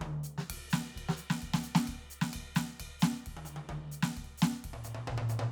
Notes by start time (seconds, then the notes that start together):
0.01 kick, high tom
0.24 hi-hat pedal
0.38 snare
0.50 kick, ride
0.70 snare, hi-hat pedal
0.97 kick, ride bell
1.04 kick
1.09 snare
1.17 hi-hat pedal, ride
1.30 snare
1.42 kick, ride bell
1.54 snare
1.63 hi-hat pedal, ride
1.75 snare
1.88 kick, ride bell
2.11 hi-hat pedal
2.22 snare
2.33 kick, ride bell
2.55 snare, hi-hat pedal
2.80 kick, ride bell
3.00 snare, hi-hat pedal
3.26 kick, ride
3.37 high tom
3.45 hi-hat pedal, high tom
3.57 high tom
3.69 kick, high tom
3.92 hi-hat pedal
4.03 snare
4.17 kick, ride bell
4.25 ride
4.38 hi-hat pedal
4.42 snare
4.65 kick, ride
4.74 mid tom
4.84 hi-hat pedal, mid tom
4.95 mid tom
5.08 kick, mid tom
5.18 mid tom
5.29 hi-hat pedal, mid tom
5.40 mid tom